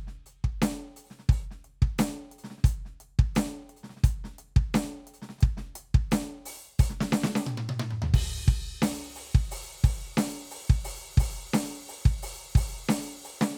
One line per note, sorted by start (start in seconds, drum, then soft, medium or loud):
0.08 snare soft
0.27 closed hi-hat medium
0.45 kick medium
0.62 closed hi-hat loud
0.62 snare loud
0.97 closed hi-hat medium
1.04 open hi-hat soft
1.11 snare soft
1.19 snare soft
1.30 open hi-hat medium
1.30 kick loud
1.40 hi-hat pedal soft
1.51 snare soft
1.65 closed hi-hat soft
1.83 kick loud
1.99 closed hi-hat loud
1.99 snare loud
2.32 closed hi-hat medium
2.39 closed hi-hat soft
2.44 snare medium
2.51 snare soft
2.58 snare soft
2.65 closed hi-hat loud
2.65 kick loud
2.86 snare soft
3.01 closed hi-hat medium
3.19 kick loud
3.36 closed hi-hat loud
3.36 snare loud
3.70 closed hi-hat soft
3.77 closed hi-hat soft
3.84 snare soft
3.90 snare soft
3.97 snare soft
4.04 closed hi-hat loud
4.04 kick loud
4.25 snare soft
4.39 closed hi-hat medium
4.57 kick loud
4.57 snare soft
4.74 closed hi-hat medium
4.74 snare loud
5.08 closed hi-hat medium
5.14 closed hi-hat medium
5.22 snare soft
5.30 snare soft
5.38 snare soft
5.38 closed hi-hat medium
5.43 kick loud
5.58 snare medium
5.76 closed hi-hat loud
5.95 kick loud
6.12 closed hi-hat loud
6.12 snare loud
6.46 open hi-hat loud
6.79 open hi-hat loud
6.79 kick loud
6.87 snare medium
6.87 hi-hat pedal soft
7.01 snare loud
7.13 snare loud
7.24 snare loud
7.36 snare loud
7.47 high tom loud
7.58 high tom medium
7.70 high tom loud
7.80 high tom loud
7.91 mid tom medium
8.03 floor tom loud
8.14 kick loud
8.14 crash loud
8.48 kick loud
8.83 open hi-hat loud
8.83 snare loud
9.16 open hi-hat loud
9.35 kick loud
9.52 open hi-hat loud
9.84 open hi-hat loud
9.84 kick loud
10.18 open hi-hat loud
10.18 snare loud
10.51 open hi-hat loud
10.70 kick loud
10.85 open hi-hat loud
11.18 open hi-hat loud
11.18 kick loud
11.54 open hi-hat loud
11.54 snare loud
11.89 open hi-hat loud
12.06 kick loud
12.23 open hi-hat loud
12.56 open hi-hat loud
12.56 kick loud
12.89 open hi-hat loud
12.89 snare loud
13.25 open hi-hat loud
13.42 snare loud